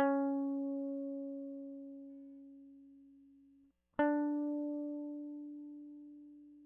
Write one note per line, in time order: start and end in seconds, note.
0.00 3.74 C#4
3.99 6.66 D4